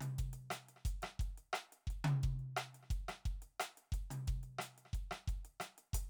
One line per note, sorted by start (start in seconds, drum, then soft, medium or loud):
0.01 closed hi-hat medium
0.01 high tom medium
0.19 kick soft
0.19 closed hi-hat medium
0.33 closed hi-hat soft
0.51 closed hi-hat medium
0.51 cross-stick medium
0.69 closed hi-hat soft
0.77 cross-stick soft
0.85 closed hi-hat soft
0.85 kick medium
1.03 cross-stick medium
1.03 closed hi-hat soft
1.20 kick medium
1.20 closed hi-hat soft
1.38 closed hi-hat soft
1.53 cross-stick medium
1.53 closed hi-hat medium
1.73 closed hi-hat soft
1.87 kick soft
1.87 closed hi-hat soft
2.05 closed hi-hat soft
2.05 high tom loud
2.23 kick medium
2.23 closed hi-hat soft
2.39 closed hi-hat soft
2.57 cross-stick medium
2.57 closed hi-hat medium
2.75 closed hi-hat soft
2.83 cross-stick soft
2.91 kick medium
2.91 closed hi-hat soft
3.09 cross-stick medium
3.09 closed hi-hat soft
3.26 kick medium
3.26 closed hi-hat soft
3.42 closed hi-hat soft
3.60 closed hi-hat medium
3.60 cross-stick medium
3.78 closed hi-hat soft
3.92 kick medium
3.92 closed hi-hat soft
4.11 closed hi-hat medium
4.11 high tom medium
4.28 kick medium
4.28 closed hi-hat soft
4.43 closed hi-hat soft
4.59 closed hi-hat medium
4.59 cross-stick medium
4.78 closed hi-hat soft
4.86 cross-stick soft
4.93 kick soft
4.93 closed hi-hat soft
5.11 cross-stick medium
5.11 closed hi-hat soft
5.28 kick medium
5.28 closed hi-hat soft
5.45 closed hi-hat soft
5.60 closed hi-hat medium
5.60 cross-stick medium
5.78 closed hi-hat soft
5.94 kick medium
5.94 closed hi-hat loud